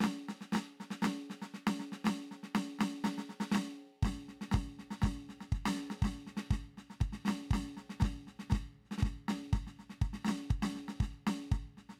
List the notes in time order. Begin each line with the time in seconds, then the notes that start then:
0.01 snare
0.04 snare
0.29 snare
0.41 snare
0.53 snare
0.56 snare
0.81 snare
0.91 snare
1.03 snare
1.05 snare
1.31 snare
1.42 snare
1.54 snare
1.68 snare
1.80 snare
1.93 snare
2.05 snare
2.07 snare
2.32 snare
2.44 snare
2.56 snare
2.79 snare
2.81 snare
3.05 snare
3.18 snare
3.30 snare
3.41 snare
3.52 snare
3.55 snare
4.03 kick, snare
4.05 snare
4.29 snare
4.42 snare
4.52 kick, snare
4.55 snare
4.79 snare
4.91 snare
5.02 kick, snare
5.05 snare
5.30 snare
5.41 snare
5.53 kick, snare
5.66 snare
5.77 snare
5.91 snare
6.03 kick, snare
6.05 snare
6.27 snare
6.51 kick, snare
6.78 snare
6.91 snare
7.01 kick, snare
7.13 snare
7.26 snare
7.29 snare
7.51 kick, snare
7.54 snare
7.77 snare
7.90 snare
8.01 kick, snare
8.04 snare
8.28 snare
8.40 snare
8.51 kick, snare
8.53 snare
8.81 snare
8.85 snare
8.92 snare
8.98 snare
9.03 kick, snare
9.29 snare
9.53 kick, snare
9.67 snare
9.79 snare
9.90 snare
10.02 kick, snare
10.14 snare
10.25 snare
10.29 snare
10.51 kick, snare
10.63 snare
10.76 snare
10.89 snare
11.01 kick, snare
11.27 snare
11.52 kick, snare
11.78 snare
11.90 snare